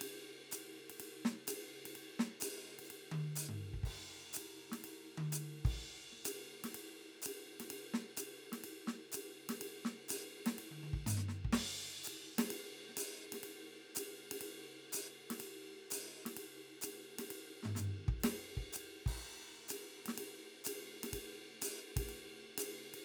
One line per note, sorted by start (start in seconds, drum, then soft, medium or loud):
0.01 ride loud
0.49 snare soft
0.49 hi-hat pedal loud
0.53 ride medium
0.90 ride medium
0.97 hi-hat pedal soft
0.97 ride medium
1.25 snare medium
1.47 hi-hat pedal loud
1.47 ride loud
1.85 ride medium
1.95 ride medium
2.19 snare medium
2.40 hi-hat pedal loud
2.40 ride loud
2.79 ride medium
2.84 hi-hat pedal soft
2.90 ride medium
3.11 high tom medium
3.35 hi-hat pedal loud
3.35 ride medium
3.49 floor tom medium
3.73 kick soft
3.83 kick soft
3.83 crash soft
3.83 ride medium
4.33 hi-hat pedal loud
4.33 ride medium
4.71 snare soft
4.71 ride medium
4.80 hi-hat pedal soft
4.80 ride medium
5.17 high tom medium
5.32 hi-hat pedal loud
5.32 ride medium
5.65 kick medium
5.65 ride medium
6.12 snare soft
6.25 hi-hat pedal loud
6.25 ride loud
6.64 snare soft
6.64 ride medium
6.72 hi-hat pedal soft
6.72 ride medium
7.14 snare soft
7.22 hi-hat pedal loud
7.26 ride loud
7.59 snare soft
7.59 ride medium
7.69 hi-hat pedal soft
7.69 ride medium
7.94 snare medium
8.17 hi-hat pedal loud
8.17 ride loud
8.52 snare soft
8.52 ride medium
8.62 hi-hat pedal soft
8.62 ride medium
8.87 snare medium
9.12 hi-hat pedal loud
9.12 ride loud
9.49 snare medium
9.49 ride medium
9.61 ride medium
9.85 snare medium
10.08 hi-hat pedal loud
10.08 ride loud
10.29 hi-hat pedal soft
10.46 snare medium
10.46 ride medium
10.58 ride medium
10.71 high tom soft
10.83 high tom soft
10.93 kick soft
11.06 floor tom medium
11.06 hi-hat pedal loud
11.17 snare soft
11.28 snare soft
11.44 kick soft
11.53 snare medium
11.53 ride loud
11.94 snare soft
12.04 hi-hat pedal loud
12.04 ride medium
12.38 snare medium
12.38 ride loud
12.50 hi-hat pedal soft
12.50 ride medium
12.88 snare soft
12.97 hi-hat pedal loud
12.97 ride loud
13.32 snare soft
13.32 ride medium
13.43 ride medium
13.84 snare soft
13.92 snare soft
13.92 hi-hat pedal loud
13.97 ride loud
14.31 snare soft
14.31 ride loud
14.41 ride medium
14.92 hi-hat pedal loud
14.92 ride medium
15.30 snare soft
15.30 ride medium
15.38 hi-hat pedal soft
15.38 ride medium
15.90 hi-hat pedal loud
15.90 ride medium
16.25 snare soft
16.25 ride medium
16.35 hi-hat pedal soft
16.35 ride medium
16.81 hi-hat pedal loud
16.81 ride loud
17.18 snare soft
17.18 ride loud
17.26 hi-hat pedal soft
17.26 ride medium
17.63 snare soft
17.63 floor tom medium
17.75 snare soft
17.75 floor tom medium
17.75 hi-hat pedal medium
18.08 kick medium
18.20 hi-hat pedal soft
18.20 ride loud
18.24 snare medium
18.57 kick soft
18.73 hi-hat pedal loud
18.73 ride medium
19.06 kick soft
19.06 crash medium
19.68 hi-hat pedal loud
19.68 ride loud
20.06 snare medium
20.06 ride medium
20.14 hi-hat pedal soft
20.14 ride loud
20.64 hi-hat pedal loud
20.64 ride loud
21.03 snare soft
21.03 ride loud
21.13 kick soft
21.13 hi-hat pedal soft
21.13 ride loud
21.54 snare soft
21.62 hi-hat pedal loud
21.62 ride loud
21.96 kick soft
21.96 ride loud
22.07 hi-hat pedal soft
22.07 ride medium
22.58 hi-hat pedal loud
22.58 ride loud
22.94 ride medium